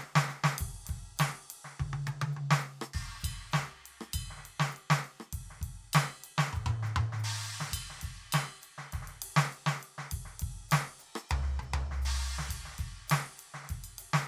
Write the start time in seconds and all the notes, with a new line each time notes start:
0.01 snare, hi-hat pedal
0.16 snare
0.29 snare, hi-hat pedal
0.45 snare
0.59 kick, hi-hat pedal, ride
0.68 kick
0.70 kick
0.86 snare, hi-hat pedal, ride
0.90 kick, snare
0.96 kick
1.18 snare, hi-hat pedal, ride
1.29 snare
1.50 hi-hat pedal, ride
1.65 snare
1.78 kick, hi-hat pedal, high tom
1.89 kick
1.94 high tom
2.07 hi-hat pedal, high tom
2.22 high tom
2.33 hi-hat pedal
2.37 high tom
2.51 snare
2.61 hi-hat pedal
2.82 cross-stick
2.94 kick, crash
3.05 kick
3.21 kick, snare, hi-hat pedal
3.25 ride bell
3.31 kick
3.34 kick
3.51 snare, hi-hat pedal, ride, floor tom
3.66 snare
3.81 hi-hat pedal
3.86 ride
4.01 cross-stick
4.13 kick, hi-hat pedal, ride bell
4.21 kick
4.24 kick
4.31 snare
4.38 snare, hi-hat pedal
4.46 ride
4.60 snare
4.65 snare
4.72 hi-hat pedal
4.77 ride
4.91 snare
5.00 hi-hat pedal
5.05 ride
5.21 cross-stick
5.33 kick, hi-hat pedal, ride
5.51 snare
5.58 snare
5.62 kick, ride
5.71 kick
5.93 snare, hi-hat pedal, ride bell
6.24 hi-hat pedal, ride
6.39 snare
6.48 snare
6.54 kick, hi-hat pedal, mid tom
6.60 snare
6.67 mid tom
6.83 snare, hi-hat pedal
6.97 mid tom
7.13 snare
7.20 hi-hat pedal
7.25 crash
7.45 hi-hat pedal
7.61 snare
7.73 kick, hi-hat pedal, ride bell
7.91 snare
8.00 snare, hi-hat pedal, ride
8.04 kick
8.33 snare, hi-hat pedal, ride bell
8.62 hi-hat pedal, ride
8.79 snare
8.93 kick, snare, hi-hat pedal, ride
9.02 kick, snare
9.08 snare, ride
9.23 hi-hat pedal, ride
9.37 snare
9.51 hi-hat pedal, ride
9.67 snare
9.80 hi-hat pedal, ride
9.99 snare
10.11 kick, hi-hat pedal, ride
10.22 kick
10.26 snare
10.31 snare
10.40 kick, hi-hat pedal, ride
10.49 kick
10.69 snare, hi-hat pedal, ride
10.81 snare
11.00 hi-hat pedal, ride
11.16 cross-stick
11.30 kick, hi-hat pedal, floor tom
11.43 snare
11.55 snare
11.59 snare, floor tom
11.63 hi-hat pedal
11.74 floor tom
11.92 snare
12.02 hi-hat pedal, crash
12.07 snare
12.10 snare
12.39 snare
12.50 kick, hi-hat pedal, ride
12.66 snare
12.72 snare
12.77 kick, snare, hi-hat pedal, ride
12.88 kick
13.08 snare, hi-hat pedal, ride
13.38 hi-hat pedal, ride
13.55 snare
13.65 snare
13.69 kick, hi-hat pedal, ride
13.74 cross-stick
13.85 ride bell
13.99 hi-hat pedal, ride
14.14 snare